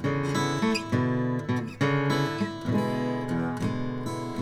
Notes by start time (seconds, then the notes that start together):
0.00 E2
0.05 C#3 D3
0.25 E2
0.35 B3 E4
0.63 A3
0.94 B2 D3
1.49 B2
1.81 C#3 D3
2.10 B3 E4
2.41 G#3
2.66 E2 B2
2.71 D3 G#3
2.77 B3
3.30 E2
3.58 E2 B2 D3
3.65 G#3
4.09 B3
4.16 E4